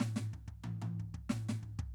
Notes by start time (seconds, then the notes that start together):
0.00 snare, floor tom
0.16 snare, floor tom
0.34 kick
0.48 kick
0.64 floor tom, high tom
0.82 floor tom, high tom
1.00 kick
1.14 kick
1.30 snare, floor tom
1.49 snare, floor tom
1.63 kick
1.79 kick